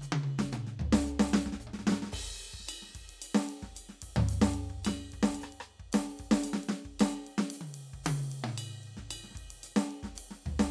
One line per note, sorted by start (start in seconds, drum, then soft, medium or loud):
0.01 hi-hat pedal medium
0.01 high tom medium
0.12 high tom loud
0.23 high tom soft
0.38 kick soft
0.38 snare medium
0.52 hi-hat pedal medium
0.52 mid tom loud
0.67 snare soft
0.79 kick soft
0.79 floor tom medium
0.92 snare loud
1.06 hi-hat pedal medium
1.19 snare loud
1.33 snare loud
1.46 kick soft
1.46 snare soft
1.52 snare medium
1.60 hi-hat pedal medium
1.60 mid tom medium
1.67 mid tom soft
1.73 snare soft
1.79 snare soft
1.87 snare loud
1.92 snare medium
1.98 cross-stick soft
2.02 snare medium
2.06 snare soft
2.12 kick medium
2.12 hi-hat pedal medium
2.12 crash loud
2.26 kick soft
2.53 kick soft
2.59 snare soft
2.67 hi-hat pedal medium
2.67 ride bell loud
2.82 snare soft
2.89 snare soft
2.95 kick soft
2.95 ride medium
3.00 kick soft
3.09 ride medium
3.22 hi-hat pedal medium
3.22 ride bell medium
3.34 snare loud
3.41 snare soft
3.49 ride medium
3.62 kick soft
3.62 snare soft
3.75 hi-hat pedal medium
3.75 ride bell medium
3.89 snare soft
4.02 kick soft
4.02 ride medium
4.16 floor tom loud
4.29 hi-hat pedal medium
4.29 ride medium
4.41 snare loud
4.54 ride medium
4.70 kick soft
4.83 snare medium
4.83 hi-hat pedal medium
4.83 ride bell loud
5.12 kick soft
5.12 ride soft
5.23 snare loud
5.34 ride bell medium
5.41 cross-stick medium
5.41 hi-hat pedal medium
5.52 ride soft
5.60 cross-stick medium
5.79 kick soft
5.92 snare loud
5.92 hi-hat pedal medium
5.92 ride loud
6.19 kick soft
6.19 ride soft
6.31 snare loud
6.44 hi-hat pedal medium
6.44 ride bell medium
6.53 snare medium
6.63 ride medium
6.69 snare medium
6.85 kick soft
6.99 snare loud
6.99 hi-hat pedal medium
6.99 ride bell loud
7.27 ride soft
7.38 snare loud
7.50 hi-hat pedal medium
7.50 ride loud
7.61 high tom medium
7.74 ride medium
7.93 kick soft
8.04 hi-hat pedal medium
8.04 high tom loud
8.04 ride loud
8.32 ride medium
8.44 mid tom loud
8.49 mid tom soft
8.58 hi-hat pedal medium
8.58 ride bell loud
8.83 ride soft
8.97 kick soft
8.97 snare soft
9.10 hi-hat pedal medium
9.10 ride bell loud
9.24 snare soft
9.31 snare soft
9.35 kick soft
9.35 snare soft
9.35 ride medium
9.40 kick soft
9.50 ride medium
9.63 hi-hat pedal medium
9.63 ride bell medium
9.76 snare loud
9.91 ride soft
10.03 kick soft
10.03 snare soft
10.15 hi-hat pedal medium
10.15 ride loud
10.31 snare soft
10.46 kick soft
10.46 floor tom medium
10.52 kick soft
10.59 snare loud